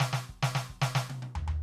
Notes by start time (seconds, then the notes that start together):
0.00 snare
0.13 snare
0.29 kick
0.43 snare
0.55 snare
0.70 kick
0.82 snare
0.95 snare
1.10 high tom
1.22 high tom
1.35 floor tom
1.48 floor tom